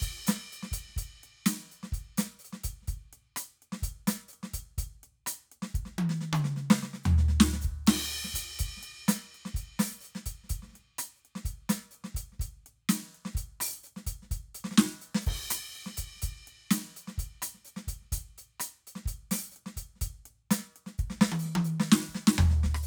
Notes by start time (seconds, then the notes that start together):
0.01 closed hi-hat, kick, snare
0.27 closed hi-hat, snare
0.53 closed hi-hat
0.63 snare
0.72 closed hi-hat, kick
0.89 snare
0.97 closed hi-hat, kick
1.24 closed hi-hat
1.46 closed hi-hat, snare
1.72 closed hi-hat
1.83 snare
1.92 closed hi-hat, kick
2.18 closed hi-hat, snare
2.39 hi-hat pedal
2.45 closed hi-hat
2.53 snare
2.64 closed hi-hat, kick
2.83 snare
2.88 closed hi-hat, kick
3.13 closed hi-hat
3.37 closed hi-hat, cross-stick
3.62 closed hi-hat
3.73 snare
3.83 closed hi-hat, kick
4.08 open hi-hat, snare
4.29 hi-hat pedal
4.34 closed hi-hat
4.43 snare
4.54 closed hi-hat, kick
4.78 closed hi-hat, kick
5.03 closed hi-hat
5.27 closed hi-hat, cross-stick
5.52 closed hi-hat
5.62 snare
5.75 kick, closed hi-hat
5.83 kick, snare
5.96 kick, high tom
6.10 snare
6.21 snare
6.33 hi-hat pedal, mid tom
6.45 snare
6.57 snare
6.70 snare, hi-hat pedal
6.83 snare
6.94 snare
7.04 floor tom, hi-hat pedal
7.18 snare
7.29 snare
7.40 snare
7.53 snare
7.62 kick, hi-hat pedal
7.71 kick
7.87 snare, crash
8.13 closed hi-hat
8.25 snare
8.34 closed hi-hat, kick
8.59 closed hi-hat, kick
8.77 snare
8.83 closed hi-hat
9.09 closed hi-hat, snare
9.35 closed hi-hat
9.46 snare
9.55 closed hi-hat, kick
9.62 kick
9.80 open hi-hat, snare
9.91 snare
10.01 closed hi-hat, hi-hat pedal
10.15 snare
10.26 closed hi-hat, kick
10.44 snare
10.50 closed hi-hat, kick
10.63 snare
10.68 snare
10.73 snare, closed hi-hat
10.99 closed hi-hat, cross-stick
11.16 hi-hat pedal
11.25 closed hi-hat
11.36 snare
11.45 closed hi-hat, kick
11.70 closed hi-hat, snare
11.91 closed hi-hat, hi-hat pedal
12.04 snare
12.14 closed hi-hat, kick, snare
12.32 snare
12.39 closed hi-hat, kick, snare
12.45 kick
12.66 closed hi-hat
12.89 closed hi-hat, snare
13.15 closed hi-hat
13.25 snare
13.35 closed hi-hat, kick
13.42 kick
13.61 open hi-hat, cross-stick
13.84 closed hi-hat, hi-hat pedal
13.97 snare
14.07 closed hi-hat, kick
14.23 snare
14.30 closed hi-hat, kick, snare
14.33 snare
14.55 closed hi-hat
14.64 snare
14.71 snare
14.78 snare
14.92 snare
15.02 open hi-hat
15.15 snare
15.22 hi-hat pedal
15.27 kick, crash
15.34 kick
15.36 kick
15.51 closed hi-hat, cross-stick
15.76 closed hi-hat
15.86 snare
15.98 closed hi-hat, kick
16.16 snare
16.22 closed hi-hat, kick
16.48 closed hi-hat
16.71 closed hi-hat, snare
16.97 closed hi-hat
17.08 snare
17.18 closed hi-hat, kick
17.42 closed hi-hat, cross-stick
17.54 snare
17.65 closed hi-hat, hi-hat pedal
17.77 snare
17.88 closed hi-hat, kick
18.02 snare
18.12 closed hi-hat, kick
18.18 kick
18.38 closed hi-hat
18.60 closed hi-hat, cross-stick
18.87 closed hi-hat
18.96 snare
19.06 closed hi-hat, kick, snare
19.31 open hi-hat, snare
19.52 hi-hat pedal
19.56 closed hi-hat
19.66 snare
19.77 closed hi-hat, kick
19.96 snare
20.01 closed hi-hat, kick
20.07 kick
20.26 closed hi-hat
20.51 closed hi-hat, snare
20.60 snare
20.76 closed hi-hat
20.87 snare
20.98 kick, closed hi-hat, hi-hat pedal
21.08 kick, snare
21.20 kick, snare
21.32 high tom
21.39 hi-hat pedal
21.45 snare
21.56 high tom
21.65 hi-hat pedal
21.80 snare
21.92 snare
22.02 snare
22.09 kick, hi-hat pedal
22.15 snare
22.27 snare, hi-hat pedal
22.38 kick, floor tom
22.50 snare
22.64 kick, snare
22.75 cross-stick
22.83 hi-hat pedal